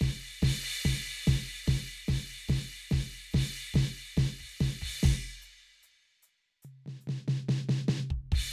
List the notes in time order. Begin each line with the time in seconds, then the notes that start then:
0.01 kick, snare, hi-hat pedal, crash
0.23 crash
0.42 kick, snare, hi-hat pedal, crash
0.53 kick
0.63 crash
0.84 kick, snare, hi-hat pedal, crash
0.95 kick
1.06 crash
1.17 crash
1.27 kick, snare, hi-hat pedal, crash
1.46 crash
1.66 kick, snare, hi-hat pedal, crash
1.87 crash
2.08 kick, snare, hi-hat pedal, crash
2.29 crash
2.49 kick, snare, hi-hat pedal, crash
2.72 crash
2.90 kick, snare, hi-hat pedal, crash
3.14 crash
3.32 kick, snare, hi-hat pedal, crash
3.56 crash
3.74 kick, snare, hi-hat pedal, crash
3.97 crash
4.17 kick, snare, hi-hat pedal, crash
4.39 kick, crash
4.60 kick, snare, hi-hat pedal, crash
4.81 kick, crash
5.03 kick, snare, hi-hat pedal, crash
5.42 hi-hat pedal
5.83 hi-hat pedal
6.23 hi-hat pedal
6.63 floor tom, hi-hat pedal
6.87 snare, floor tom
7.01 hi-hat pedal
7.08 snare, floor tom
7.29 snare, floor tom
7.49 snare, floor tom
7.70 snare, floor tom
7.89 snare, floor tom
8.11 kick
8.33 kick, crash